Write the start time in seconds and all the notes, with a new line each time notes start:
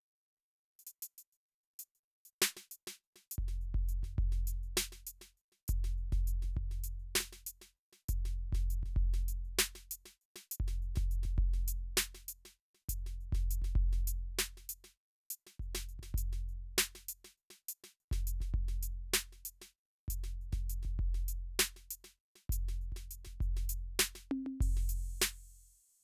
0.79 closed hi-hat
0.87 closed hi-hat
1.02 closed hi-hat
1.18 closed hi-hat
1.32 closed hi-hat
1.49 closed hi-hat
1.63 closed hi-hat
1.79 closed hi-hat
1.95 closed hi-hat
2.25 closed hi-hat
2.42 snare
2.57 snare
2.71 closed hi-hat
2.87 snare
3.04 closed hi-hat
3.16 snare
3.31 closed hi-hat
3.38 kick
3.48 snare
3.61 closed hi-hat
3.74 kick
3.89 closed hi-hat
4.03 kick, snare
4.18 kick, closed hi-hat
4.32 snare
4.47 closed hi-hat, snare
4.63 closed hi-hat
4.77 snare
4.92 snare
5.07 closed hi-hat
5.21 snare
5.37 closed hi-hat
5.52 snare
5.68 closed hi-hat, kick
5.84 snare
5.98 closed hi-hat
6.12 kick, snare
6.27 closed hi-hat
6.42 kick, snare
6.54 kick, closed hi-hat
6.71 snare
6.84 closed hi-hat
6.99 closed hi-hat
7.15 snare
7.20 snare
7.33 snare
7.46 closed hi-hat
7.61 snare
7.77 closed hi-hat
7.93 snare
8.09 closed hi-hat, kick
8.25 snare
8.38 closed hi-hat
8.53 kick, snare
8.62 kick
8.70 closed hi-hat
8.83 kick, snare
8.96 kick, closed hi-hat
9.14 snare
9.28 closed hi-hat
9.45 closed hi-hat
9.59 snare
9.75 snare
9.91 closed hi-hat
10.05 snare
10.21 closed hi-hat
10.36 snare
10.51 closed hi-hat
10.60 kick
10.68 snare
10.82 closed hi-hat
10.96 kick, snare
11.11 closed hi-hat
11.23 kick, snare
11.37 kick, closed hi-hat
11.53 snare
11.60 snare
11.68 closed hi-hat
11.97 snare
12.14 snare
12.28 closed hi-hat
12.45 snare
12.60 closed hi-hat
12.75 snare
12.89 closed hi-hat, kick
13.06 snare
13.21 closed hi-hat
13.33 kick, snare
13.51 closed hi-hat
13.62 kick, snare
13.75 kick
13.80 closed hi-hat
13.93 snare
14.07 closed hi-hat
14.39 snare
14.57 snare
14.69 closed hi-hat
14.84 snare
15.30 closed hi-hat
15.47 snare
15.60 kick, closed hi-hat
15.75 snare
15.89 closed hi-hat
15.99 kick, snare
16.14 closed hi-hat, kick
16.33 snare
16.49 closed hi-hat
16.78 snare
16.95 snare
17.08 closed hi-hat
17.24 snare
17.38 closed hi-hat
17.50 snare
17.68 closed hi-hat
17.84 snare
18.00 closed hi-hat
18.11 kick, snare
18.27 closed hi-hat
18.41 kick, snare
18.54 kick, closed hi-hat
18.68 snare
18.83 closed hi-hat
19.14 snare
19.32 snare
19.45 closed hi-hat
19.62 snare
19.78 closed hi-hat
20.08 closed hi-hat, kick
20.24 snare
20.41 closed hi-hat
20.52 kick, snare
20.70 closed hi-hat
20.83 kick, snare
20.98 kick, closed hi-hat
21.14 snare
21.28 closed hi-hat
21.59 snare
21.76 snare
21.91 closed hi-hat
22.04 snare
22.36 snare
22.49 closed hi-hat, kick
22.68 snare
22.81 closed hi-hat
22.92 kick, snare
23.11 closed hi-hat
23.25 kick, snare
23.41 kick, closed hi-hat
23.57 snare
23.69 closed hi-hat
23.99 snare
24.15 snare
24.31 high tom
24.46 high tom
24.61 kick, crash
24.77 snare
24.89 closed hi-hat
25.21 snare